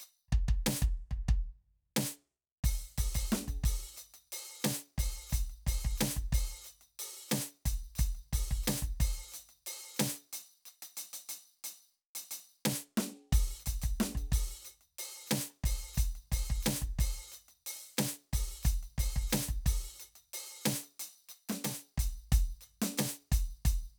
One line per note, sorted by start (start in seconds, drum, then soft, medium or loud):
0.01 hi-hat pedal medium
0.29 kick soft
0.33 kick medium
0.49 kick medium
0.56 crash soft
0.67 snare loud
0.83 kick medium
1.12 kick medium
1.25 kick soft
1.29 kick medium
1.97 snare loud
2.65 kick medium
2.65 percussion loud
2.98 kick medium
2.98 percussion loud
3.15 kick medium
3.15 percussion loud
3.31 snare loud
3.31 hi-hat pedal soft
3.48 kick soft
3.48 closed hi-hat medium
3.64 kick medium
3.64 percussion loud
3.97 closed hi-hat medium
3.97 hi-hat pedal medium
4.15 closed hi-hat medium
4.33 percussion loud
4.63 closed hi-hat loud
4.63 snare loud
4.63 hi-hat pedal medium
4.82 closed hi-hat soft
4.99 kick medium
4.99 percussion loud
5.31 closed hi-hat loud
5.31 kick medium
5.31 hi-hat pedal medium
5.50 closed hi-hat soft
5.67 kick medium
5.67 percussion loud
5.85 kick medium
5.98 closed hi-hat loud
5.98 snare loud
5.98 hi-hat pedal medium
6.17 kick soft
6.17 closed hi-hat soft
6.33 kick medium
6.33 percussion loud
6.65 closed hi-hat medium
6.65 hi-hat pedal medium
6.82 closed hi-hat soft
7.00 percussion loud
7.30 closed hi-hat loud
7.30 snare loud
7.30 hi-hat pedal medium
7.49 closed hi-hat soft
7.66 kick medium
7.66 percussion loud
7.96 closed hi-hat loud
7.96 kick medium
7.96 hi-hat pedal medium
8.16 closed hi-hat soft
8.33 kick medium
8.33 percussion loud
8.52 kick medium
8.64 snare loud
8.64 hi-hat pedal medium
8.68 closed hi-hat loud
8.83 kick medium
8.83 closed hi-hat medium
9.01 kick medium
9.01 percussion loud
9.33 closed hi-hat loud
9.33 hi-hat pedal medium
9.50 closed hi-hat soft
9.67 percussion loud
9.97 closed hi-hat loud
9.97 snare loud
9.97 hi-hat pedal medium
10.17 closed hi-hat medium
10.34 percussion loud
10.66 hi-hat pedal medium
10.83 closed hi-hat loud
10.98 closed hi-hat loud
11.14 closed hi-hat loud
11.30 closed hi-hat loud
11.65 closed hi-hat loud
12.16 closed hi-hat loud
12.32 closed hi-hat loud
12.66 snare loud
12.98 snare loud
13.33 kick loud
13.33 percussion loud
13.60 hi-hat pedal soft
13.67 closed hi-hat loud
13.67 kick medium
13.83 closed hi-hat loud
13.83 kick medium
14.01 snare loud
14.16 kick soft
14.16 closed hi-hat medium
14.33 kick medium
14.33 percussion loud
14.65 hi-hat pedal medium
14.65 percussion medium
14.82 closed hi-hat soft
14.99 percussion loud
15.28 closed hi-hat medium
15.28 snare loud
15.28 hi-hat pedal medium
15.48 cross-stick soft
15.48 closed hi-hat soft
15.64 kick medium
15.64 percussion loud
15.95 closed hi-hat loud
15.95 kick medium
15.95 hi-hat pedal medium
16.16 closed hi-hat soft
16.33 kick medium
16.33 percussion loud
16.51 kick medium
16.63 closed hi-hat medium
16.63 snare loud
16.63 hi-hat pedal medium
16.82 kick soft
16.82 closed hi-hat soft
16.99 kick medium
16.99 percussion loud
17.33 closed hi-hat medium
17.33 hi-hat pedal medium
17.49 closed hi-hat soft
17.67 percussion loud
17.98 closed hi-hat loud
17.98 snare loud
17.98 hi-hat pedal medium
18.33 kick medium
18.33 hi-hat pedal soft
18.33 percussion loud
18.64 closed hi-hat loud
18.64 kick medium
18.64 hi-hat pedal medium
18.83 closed hi-hat soft
18.99 kick medium
18.99 percussion loud
19.17 kick medium
19.31 closed hi-hat loud
19.31 snare loud
19.31 hi-hat pedal medium
19.49 kick medium
19.49 closed hi-hat medium
19.67 kick medium
19.67 percussion loud
20.00 hi-hat pedal medium
20.00 percussion medium
20.16 closed hi-hat medium
20.34 percussion loud
20.66 closed hi-hat loud
20.66 snare loud
20.66 hi-hat pedal medium
20.84 closed hi-hat medium
21.00 percussion loud
21.30 hi-hat pedal medium
21.50 snare loud
21.50 closed hi-hat loud
21.65 closed hi-hat loud
21.65 snare loud
21.98 closed hi-hat loud
21.98 kick medium
22.33 closed hi-hat loud
22.33 kick loud
22.62 hi-hat pedal medium
22.83 closed hi-hat loud
22.83 snare loud
22.98 closed hi-hat loud
22.98 snare loud
23.33 closed hi-hat loud
23.33 kick medium
23.66 closed hi-hat loud
23.66 kick medium